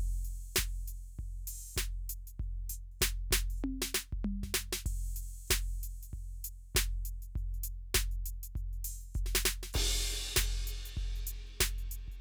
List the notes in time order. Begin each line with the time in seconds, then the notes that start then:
0.25 closed hi-hat
0.55 kick, snare, hi-hat pedal
0.88 closed hi-hat
1.16 kick, closed hi-hat
1.43 closed hi-hat
1.48 open hi-hat
1.75 kick, snare, hi-hat pedal
2.10 closed hi-hat
2.28 closed hi-hat
2.40 kick, closed hi-hat
2.70 open hi-hat, kick
2.92 open hi-hat
3.00 kick, snare, hi-hat pedal
3.32 kick, snare
3.51 open hi-hat
3.58 hi-hat pedal
3.64 kick, high tom
3.82 snare
3.95 snare
4.13 kick
4.25 mid tom
4.44 kick, snare
4.55 snare
4.73 snare
4.86 kick, crash
5.16 closed hi-hat
5.48 kick, snare, hi-hat pedal
5.84 closed hi-hat
6.03 closed hi-hat
6.14 kick, closed hi-hat
6.34 closed hi-hat
6.45 closed hi-hat
6.76 kick, snare
7.06 closed hi-hat
7.23 closed hi-hat
7.36 kick, closed hi-hat
7.54 closed hi-hat
7.64 closed hi-hat
7.95 kick, snare
8.12 closed hi-hat
8.26 closed hi-hat
8.44 closed hi-hat
8.56 kick, closed hi-hat
8.73 closed hi-hat
8.85 open hi-hat
9.01 open hi-hat
9.15 kick, hi-hat pedal
9.27 snare
9.35 snare
9.46 snare
9.63 snare
9.73 kick, hi-hat pedal, ride
9.91 closed hi-hat
10.06 crash
10.37 kick, snare
10.55 closed hi-hat
10.67 closed hi-hat
10.86 closed hi-hat
10.97 kick, closed hi-hat
11.16 closed hi-hat
11.27 closed hi-hat
11.47 closed hi-hat
11.61 kick, snare
11.79 closed hi-hat
11.92 closed hi-hat
12.08 closed hi-hat, kick